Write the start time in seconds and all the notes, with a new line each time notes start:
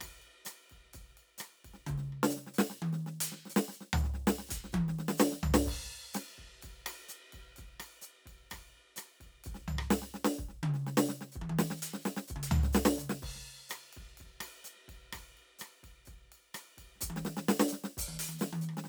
0.01 kick, cross-stick, hi-hat pedal, ride
0.07 kick
0.22 ride
0.45 cross-stick, hi-hat pedal, ride
0.70 kick, ride
0.84 snare
0.93 kick, hi-hat pedal, ride
1.17 ride
1.38 cross-stick, hi-hat pedal, ride
1.65 kick, ride
1.70 kick
1.74 snare
1.87 kick, hi-hat pedal, mid tom
1.96 kick, snare
2.13 cross-stick
2.23 snare
2.30 snare, hi-hat pedal
2.37 snare
2.47 snare
2.54 hi-hat pedal
2.59 snare
2.70 snare
2.82 high tom
2.93 snare
3.06 snare
3.21 closed hi-hat
3.32 snare
3.46 snare
3.50 hi-hat pedal
3.56 snare
3.69 snare, hi-hat pedal
3.81 snare
3.93 hi-hat pedal, floor tom
4.04 snare
4.27 snare
4.39 snare
4.47 snare, hi-hat pedal
4.51 kick, closed hi-hat
4.60 kick, snare
4.72 kick, hi-hat pedal, high tom
4.88 snare
4.99 snare
5.09 snare
5.18 snare, hi-hat pedal
5.32 snare
5.43 kick, floor tom
5.50 kick
5.54 snare
5.64 kick, hi-hat pedal
5.68 crash
5.74 kick
5.85 snare
6.14 snare, hi-hat pedal, ride
6.35 kick, hi-hat pedal
6.43 kick
6.47 snare
6.62 kick, hi-hat pedal, ride
6.69 kick
6.86 cross-stick, ride
7.09 hi-hat pedal, ride
7.33 kick, ride
7.39 kick
7.56 kick, hi-hat pedal, ride
7.64 kick
7.80 cross-stick, ride
8.02 hi-hat pedal, ride
8.26 kick, ride
8.31 kick
8.50 kick, cross-stick, hi-hat pedal, ride
8.57 kick
8.96 cross-stick, hi-hat pedal, ride
9.21 kick, ride
9.26 kick
9.44 kick, hi-hat pedal, ride
9.53 kick, snare
9.68 floor tom
9.79 cross-stick
9.91 snare
10.02 snare
10.14 snare
10.25 snare
10.39 kick
10.46 kick, snare
10.63 mid tom
10.74 snare
10.87 snare
10.97 snare
11.09 snare
11.21 snare
11.32 kick, hi-hat pedal
11.42 kick, high tom
11.50 high tom
11.59 snare
11.71 snare
11.77 hi-hat pedal
11.82 closed hi-hat
11.94 snare
12.01 hi-hat pedal
12.06 snare
12.17 snare
12.28 kick, hi-hat pedal
12.36 kick, mid tom
12.43 closed hi-hat
12.50 kick, floor tom
12.64 snare
12.73 snare, hi-hat pedal
12.85 snare
12.98 hi-hat pedal, mid tom
13.10 snare
13.22 kick, crash
13.35 snare
13.70 cross-stick, hi-hat pedal, ride
13.93 kick, ride
14.00 kick, snare
14.05 snare
14.18 kick, hi-hat pedal, ride
14.26 kick
14.41 cross-stick, ride
14.64 hi-hat pedal, ride
14.76 snare
14.88 kick, ride
14.94 kick
15.13 kick, cross-stick, hi-hat pedal, ride
15.19 kick
15.37 ride
15.59 cross-stick, hi-hat pedal, ride
15.83 kick, ride
16.05 kick, hi-hat pedal, ride
16.13 kick
16.32 ride
16.54 cross-stick, hi-hat pedal, ride
16.78 kick, ride
16.96 snare
17.01 kick, hi-hat pedal
17.09 kick, high tom
17.16 snare
17.25 snare
17.37 snare
17.49 snare
17.60 snare
17.68 hi-hat pedal
17.73 snare
17.84 snare
17.97 kick, hi-hat pedal
18.08 high tom
18.17 closed hi-hat, hi-hat pedal
18.29 high tom
18.39 snare, hi-hat pedal
18.53 high tom
18.61 snare, hi-hat pedal
18.69 cross-stick, snare
18.77 snare
18.84 snare